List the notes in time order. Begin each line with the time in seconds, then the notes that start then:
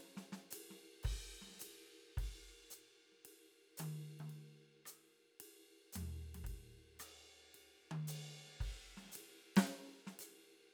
0.01 ride
0.17 snare
0.33 snare
0.51 hi-hat pedal, ride
0.71 snare
1.04 kick, crash
1.42 snare
1.47 snare
1.51 snare
1.54 snare
1.60 snare, hi-hat pedal, ride
2.18 kick, ride, crash
2.71 hi-hat pedal, ride
3.12 snare
3.25 ride
3.78 hi-hat pedal, high tom, ride
4.20 high tom, ride
4.30 ride
4.47 snare
4.86 cross-stick, hi-hat pedal, ride
5.41 ride
5.93 floor tom, hi-hat pedal, ride
6.35 floor tom, ride
6.44 kick, ride
6.96 snare, hi-hat pedal
7.00 cross-stick, ride
7.55 ride
7.91 high tom
8.08 hi-hat pedal, ride
8.46 snare
8.61 kick, crash
8.97 snare
9.02 snare
9.06 snare
9.09 snare
9.12 snare, hi-hat pedal, ride
9.57 snare, ride
9.67 ride
10.07 snare
10.20 hi-hat pedal, ride